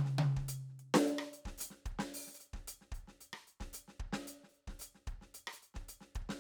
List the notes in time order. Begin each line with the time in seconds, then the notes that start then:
0.06 snare
0.19 high tom
0.37 kick, snare
0.49 closed hi-hat
0.70 snare
0.80 closed hi-hat
0.95 snare
1.07 closed hi-hat
1.19 cross-stick
1.34 closed hi-hat
1.46 kick, snare
1.58 closed hi-hat, hi-hat pedal
1.71 snare
1.86 kick, closed hi-hat
1.92 kick
1.99 snare
2.15 open hi-hat
2.28 snare
2.35 hi-hat pedal
2.41 closed hi-hat
2.54 kick, snare
2.59 kick
2.68 closed hi-hat
2.82 snare
2.92 closed hi-hat, kick
3.08 snare
3.21 closed hi-hat
3.34 cross-stick
3.48 closed hi-hat
3.61 kick, snare
3.74 closed hi-hat, hi-hat pedal
3.89 snare
4.00 kick
4.13 snare
4.28 closed hi-hat
4.44 snare
4.50 hi-hat pedal
4.54 closed hi-hat
4.68 kick, snare
4.80 closed hi-hat, hi-hat pedal
4.95 snare
5.07 closed hi-hat, kick
5.22 snare
5.35 open hi-hat
5.48 cross-stick
5.53 hi-hat pedal
5.63 closed hi-hat
5.75 kick, snare
5.82 kick
5.89 closed hi-hat
6.01 snare
6.16 kick, closed hi-hat
6.22 kick
6.30 snare